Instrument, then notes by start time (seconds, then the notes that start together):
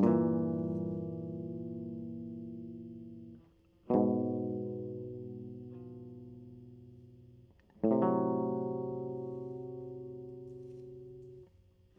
electric guitar
0.00 G2 A#2
0.07 E3
3.91 B2
3.95 G#2
7.77 A2
7.85 A2
7.92 C3
8.02 F#3